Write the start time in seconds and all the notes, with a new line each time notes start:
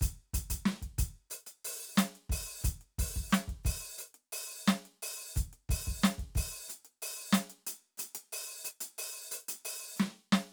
0.01 closed hi-hat, kick, hi-hat pedal
0.34 closed hi-hat, kick
0.50 closed hi-hat, kick
0.66 snare
0.82 kick, closed hi-hat
0.98 open hi-hat, kick
1.30 open hi-hat, hi-hat pedal
1.47 closed hi-hat
1.65 open hi-hat
1.95 closed hi-hat, snare, hi-hat pedal
2.15 closed hi-hat
2.30 open hi-hat, kick
2.61 closed hi-hat, kick, hi-hat pedal
2.81 closed hi-hat
2.99 open hi-hat, kick
3.16 kick
3.30 snare, hi-hat pedal
3.34 closed hi-hat
3.48 kick, closed hi-hat
3.64 open hi-hat, kick, hi-hat pedal
3.98 open hi-hat, hi-hat pedal
4.14 closed hi-hat
4.32 open hi-hat
4.67 closed hi-hat, snare, hi-hat pedal
4.85 closed hi-hat
5.03 open hi-hat
5.35 closed hi-hat, kick, hi-hat pedal
5.53 closed hi-hat
5.69 open hi-hat, kick
5.87 kick
6.02 closed hi-hat, snare, hi-hat pedal
6.18 kick, closed hi-hat
6.35 open hi-hat, kick, hi-hat pedal
6.68 closed hi-hat, hi-hat pedal
6.85 closed hi-hat
7.02 open hi-hat
7.32 closed hi-hat, snare, hi-hat pedal
7.50 closed hi-hat
7.67 open hi-hat
7.98 closed hi-hat, hi-hat pedal
8.15 closed hi-hat
8.33 open hi-hat
8.65 open hi-hat, hi-hat pedal
8.81 closed hi-hat
8.98 open hi-hat
9.31 open hi-hat, hi-hat pedal
9.48 closed hi-hat
9.65 open hi-hat
9.96 snare, hi-hat pedal
10.33 snare